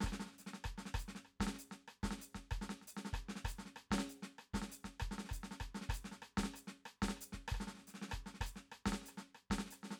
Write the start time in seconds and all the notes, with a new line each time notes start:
0.01 kick, snare
0.07 cross-stick
0.13 snare
0.20 snare
0.26 snare
0.32 snare
0.39 snare, hi-hat pedal
0.47 snare
0.54 snare
0.65 kick, cross-stick
0.78 snare
0.86 snare
0.95 kick, cross-stick
0.99 hi-hat pedal
1.08 snare
1.15 snare
1.25 cross-stick
1.40 kick, snare
1.47 snare
1.54 snare
1.59 hi-hat pedal
1.72 snare
1.88 cross-stick
2.04 kick, snare
2.11 snare
2.18 snare, hi-hat pedal
2.35 kick, snare
2.51 kick, cross-stick
2.62 snare
2.70 snare
2.82 snare
2.88 snare, hi-hat pedal
2.97 snare
3.05 snare
3.13 kick, cross-stick
3.29 snare
3.36 snare
3.45 kick, cross-stick, hi-hat pedal
3.59 snare
3.66 snare
3.76 cross-stick
3.91 kick, snare
3.99 snare
4.07 snare, hi-hat pedal
4.23 snare
4.39 cross-stick
4.54 kick, snare
4.62 snare
4.68 snare, hi-hat pedal
4.85 kick, snare
5.00 kick, cross-stick
5.12 snare
5.19 snare
5.25 snare
5.30 kick, cross-stick, hi-hat pedal
5.44 snare
5.51 snare
5.61 kick, cross-stick
5.75 snare
5.82 snare
5.90 kick, cross-stick
5.94 hi-hat pedal
6.05 snare
6.12 snare
6.22 cross-stick
6.38 kick, snare
6.44 snare
6.54 cross-stick, hi-hat pedal
6.68 snare
6.86 cross-stick
7.02 kick, snare
7.09 snare
7.17 cross-stick
7.21 hi-hat pedal
7.33 kick, snare
7.48 kick, cross-stick
7.55 cross-stick
7.61 snare
7.68 snare
7.75 snare
7.78 snare
7.88 snare, hi-hat pedal
7.94 snare
8.02 snare
8.09 cross-stick, snare
8.14 kick
8.26 snare
8.35 snare
8.41 kick, cross-stick
8.46 hi-hat pedal
8.56 snare
8.72 cross-stick
8.86 kick, snare
8.93 snare
9.02 snare
9.06 cross-stick, hi-hat pedal
9.18 snare
9.35 cross-stick
9.51 kick, snare
9.59 snare
9.66 snare
9.71 cross-stick, hi-hat pedal
9.79 snare
9.84 snare
9.91 snare